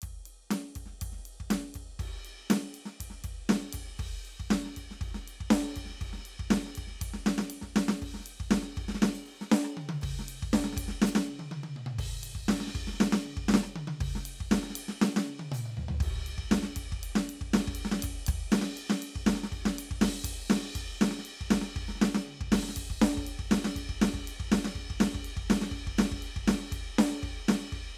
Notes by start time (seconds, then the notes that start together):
0.02 kick, ride
0.25 hi-hat pedal, ride
0.51 snare, ride
0.75 kick, ride
0.86 snare
0.92 snare
1.01 kick, ride
1.12 snare
1.18 snare
1.25 ride
1.40 kick
1.50 snare, ride
1.74 kick, ride
1.99 kick, ride
2.24 hi-hat pedal, ride
2.50 snare, ride
2.74 hi-hat pedal, ride
2.85 snare
3.00 kick, ride
3.10 snare
3.24 kick, ride
3.49 snare, ride
3.73 kick, hi-hat pedal, ride
3.99 kick, crash
4.25 ride
4.40 kick
4.50 snare, ride
4.65 snare
4.76 kick, ride
4.91 snare
5.01 kick, ride
5.14 snare
5.28 ride
5.40 kick
5.50 snare, ride
5.76 kick, ride
5.85 snare
5.90 snare
5.94 snare
6.01 kick, ride
6.13 snare
6.18 snare
6.25 ride
6.39 kick
6.50 snare, ride
6.66 snare
6.75 kick, ride
6.87 snare
6.95 snare
7.01 kick, ride
7.14 snare
7.26 snare
7.38 snare
7.50 ride
7.61 kick, snare
7.76 snare
7.88 snare
8.02 kick, crash
8.14 snare
8.20 snare
8.26 ride
8.40 kick
8.51 snare, ride
8.62 snare
8.72 snare
8.76 kick, ride
8.88 snare
8.94 snare
9.02 snare
9.13 open hi-hat
9.26 ride
9.41 snare
9.52 snare
9.65 cross-stick
9.77 high tom
9.89 high tom
10.01 kick, crash
10.19 snare
10.28 ride
10.42 kick
10.53 snare, ride
10.64 snare
10.72 snare
10.77 kick, ride
10.88 snare
11.02 snare
11.06 hi-hat pedal
11.15 snare
11.26 high tom
11.39 high tom
11.51 high tom
11.63 high tom
11.76 mid tom
11.86 mid tom
11.98 kick, crash
12.23 ride
12.35 kick
12.48 snare, ride
12.60 snare
12.67 snare
12.74 kick, ride
12.87 snare
12.93 snare
13.00 snare
13.12 snare
13.26 high tom
13.37 kick
13.48 snare
13.54 snare
13.63 cross-stick
13.76 high tom
13.87 high tom
14.00 kick, crash
14.15 snare
14.25 ride
14.40 kick
14.51 snare, ride
14.63 snare
14.70 snare
14.75 ride
14.88 snare
15.01 snare
15.16 snare
15.25 high tom
15.39 high tom
15.52 hi-hat pedal, mid tom
15.65 mid tom
15.77 floor tom
15.88 floor tom
16.00 kick, ride
16.26 ride
16.38 kick
16.51 snare, ride
16.63 snare
16.76 kick, ride
16.92 kick
17.03 ride
17.15 snare
17.29 ride
17.41 kick
17.53 snare, ride
17.67 kick
17.75 ride
17.85 snare
17.91 snare
17.97 snare
18.02 kick, ride
18.27 kick, ride
18.52 snare, ride
18.61 snare
18.77 ride
18.90 snare
19.02 ride
19.15 kick
19.26 snare, ride
19.35 snare
19.43 snare
19.52 kick, ride
19.65 snare
19.78 ride
19.91 kick
20.01 snare, crash
20.24 kick, ride
20.50 snare, ride
20.75 kick, ride
21.01 snare, ride
21.11 snare
21.19 snare
21.25 ride
21.41 kick
21.50 snare, ride
21.61 snare
21.75 kick, ride
21.88 snare
21.95 snare
22.01 snare
22.15 snare
22.27 high tom
22.41 kick
22.52 snare, crash
22.63 snare
22.69 snare
22.76 kick, ride
22.90 kick
23.02 snare, ride
23.17 kick
23.27 ride
23.39 kick
23.51 snare, ride
23.64 snare
23.76 kick, ride
23.89 kick
24.01 snare, ride
24.14 kick
24.27 ride
24.40 kick
24.52 snare, ride
24.64 snare
24.75 kick, ride
24.90 kick
25.00 snare, ride
25.14 kick
25.25 ride
25.37 kick
25.50 snare, ride
25.61 snare
25.71 kick, ride
25.87 kick
25.98 snare, ride
26.12 kick
26.22 ride
26.36 kick
26.47 snare, ride
26.72 kick, ride
26.98 snare, ride
27.22 kick, ride
27.48 snare, ride
27.71 kick, ride